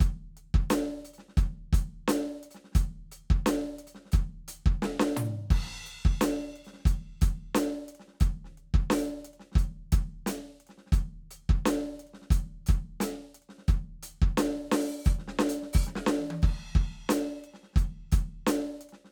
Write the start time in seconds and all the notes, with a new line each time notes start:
0.01 closed hi-hat, kick, snare
0.05 snare
0.38 closed hi-hat
0.55 kick
0.71 closed hi-hat, snare
1.06 closed hi-hat
1.14 closed hi-hat
1.19 snare
1.29 snare
1.38 closed hi-hat, kick, snare
1.44 snare
1.56 snare
1.74 closed hi-hat, kick
2.09 closed hi-hat, snare
2.44 closed hi-hat
2.52 closed hi-hat, snare
2.65 snare
2.73 closed hi-hat, kick, snare
2.81 snare
3.12 closed hi-hat
3.31 kick
3.47 closed hi-hat, snare
3.79 closed hi-hat
3.88 closed hi-hat
3.95 snare
4.06 snare
4.13 closed hi-hat, kick
4.17 snare
4.49 closed hi-hat
4.67 kick
4.83 snare
5.00 snare
5.17 mid tom
5.51 kick, crash
5.66 snare
5.69 snare
5.87 closed hi-hat
6.06 kick
6.22 closed hi-hat, snare
6.57 closed hi-hat
6.65 closed hi-hat, snare
6.74 snare
6.80 snare
6.86 closed hi-hat, kick, snare
7.22 closed hi-hat, kick
7.56 closed hi-hat, snare
7.89 closed hi-hat
7.96 closed hi-hat
8.00 snare
8.09 snare
8.15 snare
8.20 closed hi-hat, kick, snare
8.45 snare
8.58 closed hi-hat
8.75 kick
8.91 open hi-hat, snare
9.07 hi-hat pedal
9.25 closed hi-hat
9.34 closed hi-hat
9.40 snare
9.53 kick, snare
9.59 closed hi-hat
9.93 kick, closed hi-hat
10.27 closed hi-hat, snare
10.43 hi-hat pedal
10.61 closed hi-hat
10.68 snare, closed hi-hat
10.78 snare
10.87 snare
10.93 closed hi-hat, kick
11.32 closed hi-hat
11.50 kick
11.66 closed hi-hat, snare
12.00 closed hi-hat
12.08 closed hi-hat
12.14 snare
12.22 snare
12.31 closed hi-hat, kick, snare
12.67 closed hi-hat, kick
13.01 closed hi-hat, snare
13.22 hi-hat pedal
13.35 closed hi-hat
13.43 closed hi-hat
13.50 snare
13.59 snare
13.69 closed hi-hat, kick
14.04 closed hi-hat
14.23 kick
14.38 open hi-hat, snare
14.72 open hi-hat, snare
15.06 open hi-hat, kick
15.10 hi-hat pedal
15.19 snare
15.29 snare
15.40 snare
15.50 closed hi-hat
15.63 snare
15.74 open hi-hat, kick
15.84 snare, hi-hat pedal
15.96 snare
16.07 snare, hi-hat pedal
16.19 high tom
16.31 high tom
16.43 kick, crash
16.76 kick
17.10 open hi-hat, snare
17.45 closed hi-hat
17.54 snare, closed hi-hat
17.64 snare
17.74 kick, snare
17.78 closed hi-hat
18.12 closed hi-hat, kick
18.48 closed hi-hat, snare
18.61 hi-hat pedal
18.82 closed hi-hat
18.90 snare, closed hi-hat
19.05 snare